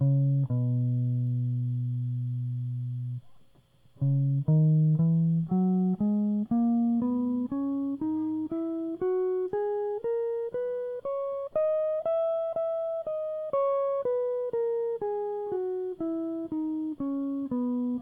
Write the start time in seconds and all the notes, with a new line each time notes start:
0.03 C#3
0.51 B2
4.03 C#3
4.49 D#3
5.00 E3
5.52 F#3
6.01 G#3
6.52 A#3
7.02 B3
7.52 C#4
8.02 D#4
8.52 E4
9.02 F#4
9.53 G#4
10.04 A#4
10.54 B4
11.05 C#5
11.56 D#5
12.06 E5
12.56 E5
13.07 D#5
13.53 C#5
14.05 B4
14.53 A#4
15.02 G#4
15.52 F#4
16.01 E4
16.52 D#4
17.00 C#4
17.52 B3